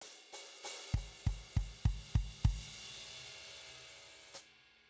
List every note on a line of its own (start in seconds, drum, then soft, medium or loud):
0.01 open hi-hat soft
0.01 ride soft
0.33 open hi-hat soft
0.33 ride soft
0.64 open hi-hat medium
0.64 ride soft
0.94 open hi-hat medium
0.94 kick soft
0.94 ride soft
1.27 open hi-hat medium
1.27 kick soft
1.27 ride soft
1.57 open hi-hat medium
1.57 kick soft
1.57 ride medium
1.85 open hi-hat medium
1.85 kick soft
1.85 ride medium
2.14 open hi-hat medium
2.14 kick soft
2.14 ride medium
2.44 open hi-hat loud
2.44 kick medium
2.44 ride medium
4.34 hi-hat pedal soft